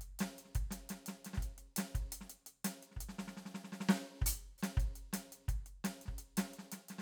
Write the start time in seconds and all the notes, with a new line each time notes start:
0.01 closed hi-hat
0.19 snare, closed hi-hat
0.38 closed hi-hat
0.45 snare
0.55 kick, closed hi-hat
0.71 snare, closed hi-hat
0.89 snare, closed hi-hat
1.06 snare, closed hi-hat
1.25 snare, closed hi-hat
1.33 kick, snare
1.42 closed hi-hat
1.58 closed hi-hat
1.76 snare, closed hi-hat
1.95 kick, closed hi-hat
2.12 closed hi-hat
2.21 snare
2.30 closed hi-hat
2.46 closed hi-hat
2.65 snare, closed hi-hat
2.83 closed hi-hat
2.91 snare
2.96 kick
3.01 closed hi-hat
3.09 snare
3.19 snare
3.28 snare
3.37 snare
3.46 snare
3.54 snare
3.64 snare
3.72 snare
3.80 snare
3.89 snare
4.22 kick
4.26 open hi-hat
4.58 hi-hat pedal
4.63 snare, closed hi-hat
4.77 kick, closed hi-hat
4.96 closed hi-hat
5.13 snare, closed hi-hat
5.32 closed hi-hat
5.48 kick, closed hi-hat
5.66 closed hi-hat
5.84 snare, closed hi-hat
6.01 snare, closed hi-hat
6.08 kick
6.18 closed hi-hat
6.37 snare, closed hi-hat
6.54 closed hi-hat
6.59 snare
6.72 snare, closed hi-hat
6.89 snare, closed hi-hat
6.99 snare